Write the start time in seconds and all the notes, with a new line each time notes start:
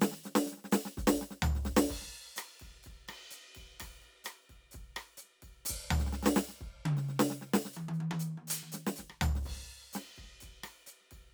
0.01 snare, hi-hat pedal
0.23 snare, hi-hat pedal
0.35 snare
0.46 snare, hi-hat pedal
0.52 snare
0.57 snare
0.64 snare
0.72 snare, hi-hat pedal
0.85 snare
0.97 kick, snare, hi-hat pedal
1.07 kick, snare
1.21 snare
1.31 snare
1.42 hi-hat pedal, floor tom
1.55 snare
1.62 kick, hi-hat pedal
1.72 kick
1.77 snare
1.87 kick, hi-hat pedal, crash
1.96 kick
2.01 snare
2.07 snare
2.36 cross-stick, hi-hat pedal, ride
2.60 kick, snare, ride
2.67 kick, snare
2.71 snare
2.76 snare
2.83 kick, hi-hat pedal, ride
2.91 kick
3.08 cross-stick, ride
3.31 hi-hat pedal, ride
3.55 kick, ride
3.62 kick
3.79 kick, cross-stick, hi-hat pedal, ride
3.86 kick
4.02 ride
4.24 cross-stick, hi-hat pedal, ride
4.50 kick, ride
4.71 kick, hi-hat pedal, ride
4.80 kick
4.96 cross-stick, ride
5.17 hi-hat pedal, ride
5.23 snare
5.42 kick, ride
5.65 hi-hat pedal
5.70 kick
5.76 kick
5.91 floor tom
6.00 snare
6.07 snare
6.13 snare
6.26 snare
6.36 snare
6.49 snare
6.61 kick
6.67 kick
6.85 mid tom
6.97 snare
7.09 snare
7.19 snare
7.30 snare
7.41 snare
7.53 snare, hi-hat pedal
7.65 snare
7.73 hi-hat pedal, high tom
7.81 kick
7.89 high tom
7.94 hi-hat pedal
8.00 high tom
8.11 high tom
8.19 hi-hat pedal
8.38 high tom
8.47 closed hi-hat, hi-hat pedal
8.63 high tom
8.72 snare, hi-hat pedal
8.87 snare
8.96 kick, snare, hi-hat pedal
9.10 cross-stick
9.21 kick, hi-hat pedal, floor tom
9.35 snare
9.43 kick, hi-hat pedal, crash
9.49 kick, snare
9.55 snare
9.59 snare
9.64 snare
9.93 snare, hi-hat pedal, ride
10.16 kick, ride
10.23 kick, snare
10.27 snare
10.31 snare
10.40 kick, hi-hat pedal, ride
10.48 kick
10.64 cross-stick, ride
10.87 hi-hat pedal, ride
11.01 snare
11.11 kick, ride
11.17 kick